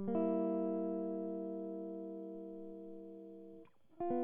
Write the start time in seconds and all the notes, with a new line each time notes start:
0.00 G3
0.08 A#3
0.15 E4
4.01 F4
4.11 B3